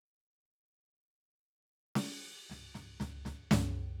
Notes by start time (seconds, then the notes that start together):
1.95 snare, crash
2.50 snare, floor tom
2.74 snare, floor tom
3.00 snare, floor tom
3.25 snare, floor tom
3.51 snare, floor tom